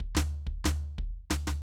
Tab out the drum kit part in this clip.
SD |-o--o---oo--|
FT |-o--o---oo--|
BD |o--o--o-----|